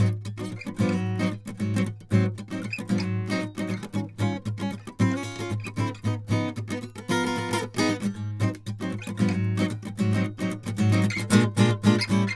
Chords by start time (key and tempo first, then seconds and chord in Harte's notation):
G# major, 114 BPM
0.00 G#:7
3.94 D#:sus2(b7,*5)
6.05 C#:sus2(13,b7,*5)
8.15 G#:7